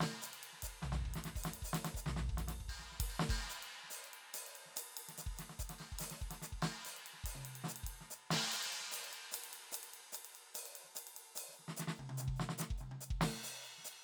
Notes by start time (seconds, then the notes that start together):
0.01 snare, ride
0.22 hi-hat pedal, ride
0.34 ride
0.44 ride
0.53 snare
0.63 kick, hi-hat pedal, ride
0.82 snare, floor tom
0.92 snare, floor tom
1.06 kick
1.14 snare, ride
1.25 snare, ride
1.36 kick, hi-hat pedal
1.44 snare, ride
1.54 ride
1.63 kick, hi-hat pedal
1.74 snare, ride
1.85 snare, ride
1.95 kick, hi-hat pedal
2.07 snare, floor tom
2.17 snare, floor tom
2.30 kick
2.38 snare, ride
2.48 snare, ride
2.61 kick
2.69 kick, ride
2.80 snare
2.92 snare
3.00 kick, ride
3.10 ride
3.20 snare
3.30 kick, ride
3.46 snare
3.50 hi-hat pedal, ride
3.63 ride
3.84 snare
3.91 hi-hat pedal, ride
4.05 ride
4.14 ride
4.34 hi-hat pedal, ride
4.47 ride
4.56 ride
4.66 snare
4.77 hi-hat pedal, ride
4.96 hi-hat pedal, ride
5.09 snare, ride
5.18 snare, hi-hat pedal, ride
5.27 kick
5.37 snare, hi-hat pedal, ride
5.50 snare
5.60 kick, hi-hat pedal
5.70 snare, ride
5.77 snare, hi-hat pedal, ride
5.92 kick
5.99 snare, hi-hat pedal, ride
6.11 snare, ride
6.20 kick, hi-hat pedal
6.31 snare, ride
6.42 snare, hi-hat pedal
6.53 kick
6.63 snare, ride
6.86 hi-hat pedal, ride
6.97 ride
7.05 hi-hat pedal, ride
7.14 snare
7.24 kick, hi-hat pedal, ride
7.36 high tom
7.45 hi-hat pedal, ride
7.56 ride
7.64 snare
7.69 hi-hat pedal
7.77 ride
7.84 kick, ride
8.01 snare
8.11 hi-hat pedal
8.31 snare, hi-hat pedal, ride
8.52 hi-hat pedal, ride
8.63 ride
8.72 hi-hat pedal, ride
8.80 snare
8.92 hi-hat pedal, ride
9.05 ride
9.10 hi-hat pedal, ride
9.32 hi-hat pedal, ride
9.44 ride
9.51 hi-hat pedal, ride
9.72 hi-hat pedal, ride
9.84 ride
9.91 hi-hat pedal, ride
10.13 hi-hat pedal, ride
10.25 ride
10.32 hi-hat pedal, ride
10.55 hi-hat pedal, ride
10.66 ride
10.76 ride
10.85 snare
10.96 hi-hat pedal, ride
11.07 ride
11.15 hi-hat pedal, ride
11.36 hi-hat pedal, ride
11.49 snare
11.54 hi-hat pedal
11.60 snare
11.69 snare
11.77 snare, hi-hat pedal
11.88 snare
11.95 kick, hi-hat pedal
12.00 high tom
12.10 high tom
12.18 hi-hat pedal, high tom
12.28 kick
12.37 snare, hi-hat pedal
12.49 snare
12.58 snare, hi-hat pedal
12.71 kick
12.78 hi-hat pedal, high tom
12.92 high tom
13.01 hi-hat pedal
13.11 kick
13.21 snare, hi-hat pedal, crash
13.43 hi-hat pedal, ride
13.55 ride
13.64 hi-hat pedal, ride
13.78 snare
13.85 hi-hat pedal, ride